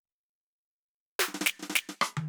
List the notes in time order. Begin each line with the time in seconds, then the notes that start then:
1.19 snare
1.28 snare
1.34 snare
1.41 snare
1.46 snare
1.59 snare
1.63 snare
1.70 snare
1.75 snare
1.89 snare
2.01 cross-stick
2.17 high tom